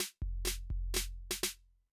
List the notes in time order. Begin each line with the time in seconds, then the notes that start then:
0.00 snare
0.22 kick
0.45 snare
0.47 snare
0.70 kick
0.94 snare
0.96 snare
1.31 snare
1.43 snare